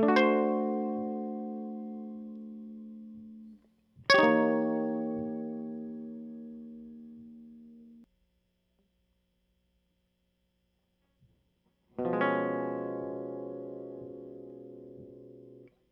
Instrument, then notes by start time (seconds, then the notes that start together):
electric guitar
0.00 A3 D4
0.09 F#4
0.17 C5
4.10 C#5
4.15 G4
4.19 D#4
4.24 A#3
12.00 B2
12.06 F3
12.14 G#3
12.22 C#4